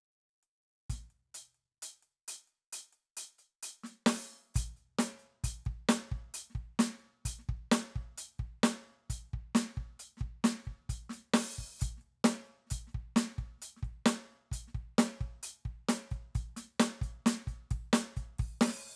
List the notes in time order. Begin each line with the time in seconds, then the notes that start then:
0.43 closed hi-hat
0.90 closed hi-hat, kick, snare
1.10 closed hi-hat
1.34 closed hi-hat
1.54 closed hi-hat
1.82 closed hi-hat
2.02 closed hi-hat
2.28 closed hi-hat
2.47 closed hi-hat
2.73 closed hi-hat
2.93 closed hi-hat
3.17 closed hi-hat
3.38 closed hi-hat
3.63 closed hi-hat
3.84 closed hi-hat, snare
4.06 open hi-hat, snare
4.54 closed hi-hat, kick, hi-hat pedal
4.76 closed hi-hat
4.99 closed hi-hat, snare
5.19 closed hi-hat
5.44 closed hi-hat, kick
5.65 kick, closed hi-hat
5.89 closed hi-hat, snare
6.11 kick
6.34 closed hi-hat
6.50 snare
6.55 kick, closed hi-hat
6.79 closed hi-hat, snare
7.00 closed hi-hat
7.25 closed hi-hat, kick
7.39 snare
7.49 kick
7.71 closed hi-hat, snare
7.96 kick
8.18 closed hi-hat
8.39 kick, closed hi-hat
8.63 closed hi-hat, snare
9.10 closed hi-hat, kick
9.33 kick
9.55 closed hi-hat, snare
9.76 kick, closed hi-hat
9.99 closed hi-hat
10.17 kick, snare
10.21 closed hi-hat
10.44 closed hi-hat, snare
10.65 kick, closed hi-hat
10.89 closed hi-hat, kick
11.09 closed hi-hat, snare
11.34 open hi-hat, snare
11.58 kick
11.79 closed hi-hat, kick, hi-hat pedal
11.97 snare
12.01 closed hi-hat
12.24 closed hi-hat, snare
12.46 closed hi-hat
12.66 closed hi-hat, snare
12.71 kick
12.87 snare
12.91 kick, closed hi-hat
13.16 closed hi-hat, snare
13.38 kick, closed hi-hat
13.58 closed hi-hat, snare
13.77 snare
13.83 kick, closed hi-hat
14.06 closed hi-hat, snare
14.52 closed hi-hat, kick
14.67 snare
14.74 kick, closed hi-hat
14.98 closed hi-hat, snare
15.21 kick, closed hi-hat
15.43 closed hi-hat
15.65 kick, closed hi-hat
15.89 closed hi-hat, snare
16.10 closed hi-hat, kick
16.35 closed hi-hat, kick
16.56 closed hi-hat, snare
16.80 closed hi-hat, snare
17.01 closed hi-hat, kick
17.26 closed hi-hat, snare
17.47 closed hi-hat, kick
17.71 kick, closed hi-hat
17.93 closed hi-hat, snare
18.16 closed hi-hat, kick, snare
18.39 kick, open hi-hat
18.61 open hi-hat, snare
18.67 snare
18.79 snare